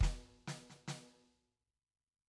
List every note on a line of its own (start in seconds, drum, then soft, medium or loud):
0.01 kick medium
0.01 snare medium
0.48 snare medium
0.70 snare soft
0.88 snare medium